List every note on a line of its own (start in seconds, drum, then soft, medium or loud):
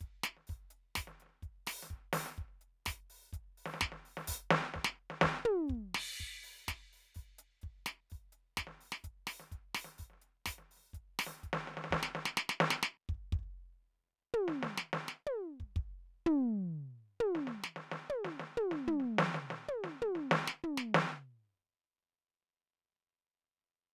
0.01 closed hi-hat soft
0.01 kick soft
0.24 open hi-hat loud
0.24 snare loud
0.37 snare soft
0.47 open hi-hat soft
0.47 kick soft
0.47 snare soft
0.71 open hi-hat soft
0.96 open hi-hat medium
0.96 kick soft
0.96 snare medium
1.08 snare soft
1.20 open hi-hat soft
1.20 snare soft
1.27 snare soft
1.29 snare soft
1.43 kick soft
1.43 closed hi-hat soft
1.67 open hi-hat medium
1.67 snare medium
1.83 snare soft
1.90 kick soft
1.90 closed hi-hat soft
2.13 open hi-hat loud
2.13 snare medium
2.26 snare soft
2.37 closed hi-hat soft
2.37 kick soft
2.42 snare soft
2.49 snare soft
2.61 open hi-hat soft
2.86 open hi-hat medium
2.86 kick soft
2.86 snare medium
3.10 open hi-hat soft
3.33 closed hi-hat medium
3.33 kick soft
3.58 open hi-hat soft
3.66 snare soft
3.74 snare soft
3.81 kick soft
3.81 snare loud
3.92 snare soft
4.05 open hi-hat soft
4.17 snare soft
4.28 open hi-hat loud
4.28 kick soft
4.51 snare loud
4.61 snare soft
4.74 kick soft
4.74 snare soft
4.85 snare loud
5.10 snare soft
5.22 kick soft
5.22 snare loud
5.22 hi-hat pedal soft
5.35 snare soft
5.45 mid tom loud
5.68 kick soft
5.68 hi-hat pedal soft
5.75 kick soft
5.95 snare loud
5.95 crash medium
6.20 kick soft
6.44 open hi-hat soft
6.68 closed hi-hat loud
6.68 kick soft
6.68 snare medium
6.93 open hi-hat soft
7.15 open hi-hat soft
7.15 kick soft
7.39 open hi-hat medium
7.62 kick soft
7.62 closed hi-hat soft
7.86 open hi-hat medium
7.86 snare medium
8.10 open hi-hat soft
8.10 kick soft
8.33 open hi-hat soft
8.57 open hi-hat medium
8.57 kick soft
8.57 snare loud
8.67 snare soft
8.81 open hi-hat soft
8.92 snare medium
9.04 closed hi-hat medium
9.04 kick soft
9.27 open hi-hat medium
9.27 snare medium
9.40 snare soft
9.52 closed hi-hat soft
9.52 kick soft
9.75 open hi-hat medium
9.75 snare loud
9.85 snare soft
9.99 open hi-hat soft
9.99 kick soft
10.10 snare soft
10.14 snare soft
10.22 open hi-hat soft
10.46 open hi-hat medium
10.46 kick soft
10.46 snare medium
10.59 snare soft
10.71 open hi-hat soft
10.77 snare soft
10.94 closed hi-hat soft
10.94 kick soft
11.19 open hi-hat medium
11.19 snare loud
11.27 snare soft
11.44 open hi-hat soft
11.44 kick soft
11.53 snare medium
11.68 snare soft
11.74 snare soft
11.77 snare soft
11.84 snare soft
11.91 kick soft
11.91 snare medium
12.03 snare loud
12.15 snare medium
12.26 snare loud
12.37 snare loud
12.50 snare loud
12.61 snare loud
12.71 snare loud
12.83 snare loud
13.09 kick soft
13.15 kick soft
13.33 kick medium
13.39 kick soft
13.43 kick soft
14.34 mid tom loud
14.48 snare soft
14.63 snare medium
14.78 snare loud
14.93 snare medium
15.09 snare medium
15.27 high tom medium
15.60 kick soft
15.76 kick soft
16.26 floor tom loud
17.20 mid tom loud
17.35 snare soft
17.47 snare soft
17.64 snare medium
17.76 snare soft
17.92 snare medium
18.10 high tom medium
18.25 snare soft
18.40 snare soft
18.57 mid tom loud
18.72 snare soft
18.87 floor tom loud
19.00 snare soft
19.19 snare loud
19.35 snare medium
19.51 snare medium
19.69 high tom medium
19.84 snare soft
20.02 mid tom loud
20.16 snare soft
20.32 snare loud
20.48 snare medium
20.63 floor tom medium
20.78 snare medium
20.95 snare loud